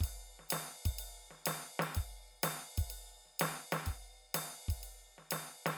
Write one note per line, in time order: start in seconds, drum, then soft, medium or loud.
0.01 kick soft
0.01 ride medium
0.40 snare soft
0.49 snare medium
0.49 hi-hat pedal medium
0.49 ride loud
0.86 kick medium
0.86 ride medium
0.97 hi-hat pedal soft
0.97 ride medium
1.31 snare soft
1.46 snare medium
1.46 hi-hat pedal loud
1.46 ride loud
1.80 snare medium
1.80 ride medium
1.95 kick soft
1.95 ride medium
2.31 snare soft
2.43 snare medium
2.43 hi-hat pedal loud
2.43 ride loud
2.78 kick soft
2.78 ride medium
2.90 ride medium
3.26 snare soft
3.39 snare medium
3.39 hi-hat pedal loud
3.39 ride loud
3.73 snare medium
3.73 ride medium
3.86 kick soft
3.86 ride medium
4.35 snare medium
4.35 hi-hat pedal loud
4.35 ride loud
4.69 kick soft
4.69 ride medium
4.81 hi-hat pedal soft
4.81 ride medium
5.19 snare soft
5.30 snare medium
5.30 hi-hat pedal loud
5.30 ride loud
5.66 snare medium
5.66 ride medium